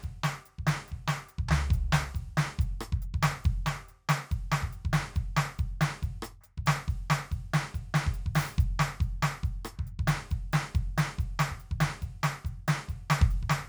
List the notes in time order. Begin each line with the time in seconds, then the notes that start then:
0.01 closed hi-hat, kick, snare
0.24 closed hi-hat, snare
0.46 closed hi-hat, snare
0.59 kick
0.67 closed hi-hat, snare
0.88 closed hi-hat, snare
0.92 kick
1.08 closed hi-hat, snare
1.27 closed hi-hat, snare
1.39 kick
1.49 snare, floor tom
1.71 closed hi-hat, kick
1.93 closed hi-hat, snare
2.15 closed hi-hat, kick, snare
2.38 closed hi-hat, snare
2.59 closed hi-hat, kick, snare
2.81 closed hi-hat, cross-stick
2.93 kick, snare
3.02 closed hi-hat
3.14 kick
3.23 closed hi-hat, snare
3.44 closed hi-hat, kick, snare
3.67 closed hi-hat, snare
3.88 closed hi-hat, snare
4.09 closed hi-hat, snare
4.30 closed hi-hat, kick, snare
4.52 closed hi-hat, snare
4.63 kick, snare
4.73 closed hi-hat
4.85 kick
4.93 closed hi-hat, snare
5.13 closed hi-hat, kick, snare
5.37 closed hi-hat, snare
5.56 closed hi-hat, kick, snare
5.81 closed hi-hat, snare
5.94 snare
6.03 closed hi-hat, kick
6.23 closed hi-hat, cross-stick
6.41 closed hi-hat, snare
6.58 kick
6.67 closed hi-hat, snare
6.88 closed hi-hat, kick
7.10 closed hi-hat, snare
7.32 closed hi-hat, kick
7.54 closed hi-hat, snare
7.62 snare
7.67 snare
7.75 closed hi-hat, kick
7.95 closed hi-hat, snare
8.07 kick
8.14 closed hi-hat
8.26 kick
8.35 open hi-hat, snare
8.49 snare
8.59 closed hi-hat, kick
8.80 closed hi-hat, snare
9.01 closed hi-hat, kick
9.23 closed hi-hat, snare
9.32 snare
9.37 snare
9.44 kick, closed hi-hat
9.65 closed hi-hat, cross-stick
9.74 snare
9.78 kick, snare
9.80 snare
9.87 closed hi-hat
10.00 kick
10.08 closed hi-hat, snare
10.30 closed hi-hat, kick, snare
10.53 closed hi-hat, snare
10.75 closed hi-hat, kick, snare
10.98 closed hi-hat, snare
11.19 closed hi-hat, kick
11.40 closed hi-hat, snare
11.51 kick, snare
11.60 closed hi-hat
11.72 kick
11.81 closed hi-hat, snare
12.02 closed hi-hat, kick
12.24 closed hi-hat, snare
12.45 closed hi-hat, kick, snare
12.68 closed hi-hat, snare
12.88 closed hi-hat, kick, snare
13.10 closed hi-hat, snare
13.22 kick, snare
13.31 closed hi-hat
13.43 kick
13.50 closed hi-hat, snare